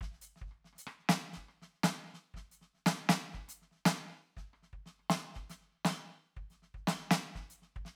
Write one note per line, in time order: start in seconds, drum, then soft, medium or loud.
0.01 kick soft
0.01 cross-stick soft
0.01 snare soft
0.11 snare soft
0.21 hi-hat pedal medium
0.36 snare soft
0.41 kick soft
0.46 snare soft
0.51 cross-stick soft
0.64 snare soft
0.73 cross-stick soft
0.73 snare soft
0.78 hi-hat pedal medium
0.87 cross-stick medium
0.98 snare soft
1.09 snare loud
1.32 snare soft
1.37 kick soft
1.48 cross-stick soft
1.48 snare soft
1.62 snare soft
1.67 snare soft
1.73 snare soft
1.83 snare loud
1.98 snare soft
2.13 snare soft
2.34 kick soft
2.34 snare soft
2.51 snare soft
2.51 hi-hat pedal soft
2.51 crash soft
2.61 snare soft
2.73 snare soft
2.75 snare soft
2.86 snare loud
2.99 snare soft
3.09 snare loud
3.13 cross-stick medium
3.20 snare soft
3.32 kick soft
3.32 snare soft
3.36 snare soft
3.48 cross-stick soft
3.48 snare soft
3.48 hi-hat pedal medium
3.61 snare soft
3.71 snare soft
3.74 snare soft
3.85 cross-stick medium
3.85 snare loud
4.00 cross-stick soft
4.00 snare soft
4.14 snare soft
4.23 snare soft
4.37 kick soft
4.37 snare soft
4.53 cross-stick soft
4.62 snare soft
4.73 kick soft
4.86 snare soft
4.99 cross-stick soft
5.10 snare loud
5.16 snare soft
5.34 kick soft
5.34 snare soft
5.49 snare soft
5.49 hi-hat pedal soft
5.61 snare soft
5.85 snare loud
5.90 snare soft
6.00 snare soft
6.25 snare soft
6.33 snare soft
6.36 kick soft
6.36 snare soft
6.50 snare soft
6.50 hi-hat pedal soft
6.62 snare soft
6.74 kick soft
6.74 snare soft
6.87 snare medium
6.99 snare soft
7.11 snare loud
7.35 kick soft
7.35 snare soft
7.40 snare soft
7.50 snare soft
7.50 hi-hat pedal soft
7.62 snare soft
7.74 kick soft
7.74 snare soft
7.85 snare soft